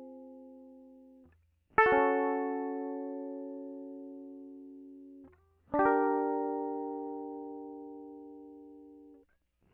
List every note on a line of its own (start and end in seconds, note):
1.78 5.11 A4
1.86 5.37 F#4
1.92 5.30 C#4
5.74 9.26 D4
5.79 9.24 G4
5.85 9.24 A#4